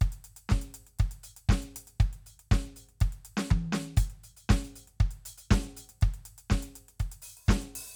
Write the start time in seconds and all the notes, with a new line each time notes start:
0.01 kick, closed hi-hat
0.12 closed hi-hat
0.24 closed hi-hat
0.36 closed hi-hat
0.49 kick, snare
0.61 closed hi-hat
0.72 kick, closed hi-hat
0.87 closed hi-hat
0.99 kick, closed hi-hat
1.11 closed hi-hat
1.23 closed hi-hat
1.36 closed hi-hat
1.49 kick, snare
1.62 closed hi-hat
1.76 closed hi-hat
1.87 closed hi-hat
2.00 kick, closed hi-hat
2.13 closed hi-hat
2.26 closed hi-hat
2.39 closed hi-hat
2.51 kick, snare
2.65 closed hi-hat
2.76 closed hi-hat
2.89 closed hi-hat
3.00 kick, closed hi-hat
3.12 closed hi-hat
3.25 closed hi-hat
3.37 snare
3.50 kick, high tom
3.72 snare
3.97 closed hi-hat, kick
4.10 closed hi-hat
4.24 closed hi-hat
4.37 closed hi-hat
4.49 kick, snare
4.64 closed hi-hat
4.76 closed hi-hat
4.87 closed hi-hat
5.00 kick, closed hi-hat
5.11 closed hi-hat
5.25 closed hi-hat
5.38 closed hi-hat
5.51 kick, snare
5.64 closed hi-hat
5.77 closed hi-hat
5.89 closed hi-hat
6.01 kick, closed hi-hat
6.14 closed hi-hat
6.25 closed hi-hat
6.38 closed hi-hat
6.50 kick, snare
6.62 closed hi-hat
6.75 closed hi-hat
6.88 closed hi-hat
7.00 kick, closed hi-hat
7.12 closed hi-hat
7.22 open hi-hat
7.37 open hi-hat
7.46 kick, snare, hi-hat pedal
7.62 closed hi-hat
7.75 open hi-hat
7.89 open hi-hat